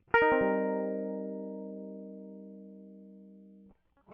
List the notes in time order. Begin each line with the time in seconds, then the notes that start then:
0.14 A#4
0.22 D#4
0.32 C4
0.41 G3